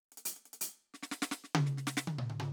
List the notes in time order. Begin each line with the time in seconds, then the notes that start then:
0.12 closed hi-hat
0.17 closed hi-hat
0.25 closed hi-hat
0.36 closed hi-hat
0.45 closed hi-hat
0.53 closed hi-hat
0.61 closed hi-hat
0.94 snare
1.03 snare
1.11 snare
1.22 snare
1.31 snare
1.44 snare
1.55 high tom
1.66 snare
1.77 snare
1.87 snare
2.07 high tom
2.18 mid tom
2.30 high tom
2.40 high tom